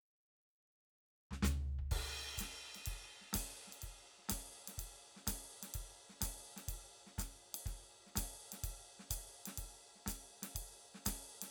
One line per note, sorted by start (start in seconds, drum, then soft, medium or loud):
1.31 snare soft
1.31 floor tom soft
1.42 snare medium
1.42 floor tom medium
1.42 hi-hat pedal loud
1.79 kick soft
1.91 kick soft
1.91 crash medium
1.91 ride medium
2.37 kick soft
2.37 snare soft
2.37 hi-hat pedal medium
2.37 ride medium
2.75 snare soft
2.75 ride soft
2.86 kick soft
2.86 ride medium
3.21 snare soft
3.33 kick soft
3.33 snare soft
3.33 hi-hat pedal medium
3.33 ride loud
3.67 snare soft
3.72 ride soft
3.82 kick soft
3.82 ride medium
4.18 snare soft
4.29 kick soft
4.29 snare soft
4.29 hi-hat pedal medium
4.29 ride loud
4.67 snare soft
4.67 ride medium
4.77 kick soft
4.77 hi-hat pedal soft
4.77 ride medium
5.16 snare soft
5.27 kick soft
5.27 snare soft
5.27 hi-hat pedal medium
5.27 ride loud
5.62 snare soft
5.62 ride medium
5.74 kick soft
5.74 ride medium
6.09 snare soft
6.21 kick soft
6.21 snare soft
6.21 hi-hat pedal medium
6.21 ride loud
6.56 snare soft
6.56 ride medium
6.67 kick soft
6.67 hi-hat pedal soft
6.67 ride medium
7.06 snare soft
7.18 kick soft
7.18 snare soft
7.18 hi-hat pedal medium
7.18 ride medium
7.54 snare soft
7.54 ride loud
7.66 kick soft
7.66 snare soft
7.66 ride soft
8.06 snare soft
8.15 kick soft
8.15 snare soft
8.15 hi-hat pedal medium
8.15 ride loud
8.21 snare soft
8.52 snare soft
8.52 ride medium
8.63 kick soft
8.63 snare soft
8.63 ride medium
8.99 snare soft
9.10 kick soft
9.10 hi-hat pedal medium
9.10 ride loud
9.45 snare soft
9.45 ride medium
9.57 kick soft
9.57 ride medium
9.95 snare soft
10.06 kick soft
10.06 snare soft
10.06 hi-hat pedal medium
10.06 ride medium
10.42 snare soft
10.42 ride medium
10.55 kick soft
10.55 ride medium
10.94 snare soft
11.05 kick soft
11.05 snare soft
11.05 hi-hat pedal medium
11.05 ride loud
11.42 snare soft
11.42 ride medium